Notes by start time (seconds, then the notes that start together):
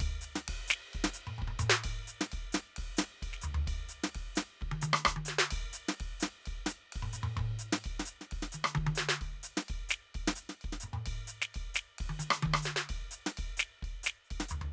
0.01 kick, ride bell
0.08 kick
0.11 kick
0.22 hi-hat pedal, ride
0.36 snare
0.49 kick, ride
0.56 kick
0.69 snare, hi-hat pedal
0.94 kick, ride bell
1.05 snare
1.14 hi-hat pedal, ride
1.28 mid tom
1.39 kick, mid tom
1.48 kick, mid tom
1.60 hi-hat pedal, mid tom
1.70 snare
1.85 kick, ride bell
1.93 kick
2.07 hi-hat pedal, ride
2.22 snare
2.32 kick, ride bell
2.53 snare, hi-hat pedal
2.77 kick, ride
2.98 snare, hi-hat pedal
3.23 kick, ride bell
3.34 snare
3.42 floor tom, hi-hat pedal
3.55 floor tom
3.68 kick, ride bell
3.75 kick
3.90 hi-hat pedal, ride
4.04 snare
4.15 kick, ride
4.36 snare, hi-hat pedal
4.62 kick, high tom
4.72 high tom
4.82 hi-hat pedal, high tom
4.94 cross-stick
5.02 hi-hat pedal
5.06 kick, cross-stick
5.17 high tom
5.26 snare, hi-hat pedal
5.39 snare
5.51 kick, ride bell
5.61 kick
5.74 hi-hat pedal, ride
5.89 snare
5.95 hi-hat pedal
6.01 kick, ride
6.21 snare, hi-hat pedal
6.42 hi-hat pedal
6.46 kick, ride bell
6.67 snare, hi-hat pedal
6.93 kick, ride
7.03 mid tom
7.14 hi-hat pedal, mid tom
7.24 mid tom
7.37 kick, mid tom
7.60 hi-hat pedal
7.73 snare
7.85 kick, ride bell
8.00 snare
8.06 hi-hat pedal
8.22 snare
8.32 kick, ride
8.43 snare
8.53 hi-hat pedal, high tom
8.65 cross-stick
8.76 kick, high tom
8.85 kick, high tom
8.96 snare, hi-hat pedal
9.10 snare
9.22 kick, ride bell
9.44 hi-hat pedal, ride
9.58 snare
9.69 kick, ride bell
9.90 snare, hi-hat pedal
10.15 kick, ride bell
10.28 snare
10.36 hi-hat pedal, ride
10.50 snare
10.62 kick, ride bell
10.73 snare
10.81 hi-hat pedal, mid tom
10.94 mid tom
11.07 kick, ride bell
11.14 kick
11.28 hi-hat pedal, ride
11.42 snare
11.55 kick, ride bell
11.75 snare, hi-hat pedal
11.99 kick, ride
12.07 kick, high tom
12.20 hi-hat pedal, high tom
12.31 cross-stick
12.40 hi-hat pedal, high tom
12.46 kick
12.52 kick, cross-stick
12.63 snare, hi-hat pedal
12.77 snare
12.90 kick, ride bell
13.12 hi-hat pedal, ride
13.27 snare
13.38 kick, ride bell
13.58 snare, hi-hat pedal
13.83 kick, ride bell
14.04 snare, hi-hat pedal
14.25 hi-hat pedal
14.31 kick, ride bell
14.41 snare
14.49 floor tom, hi-hat pedal
14.62 floor tom